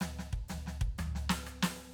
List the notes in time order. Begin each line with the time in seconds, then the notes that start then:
0.00 snare, floor tom, hi-hat pedal
0.19 snare, floor tom
0.33 kick
0.48 snare, floor tom, hi-hat pedal
0.66 snare, floor tom
0.81 kick
0.98 cross-stick, floor tom, hi-hat pedal
1.15 snare
1.29 snare
1.46 cross-stick, hi-hat pedal
1.62 open hi-hat, snare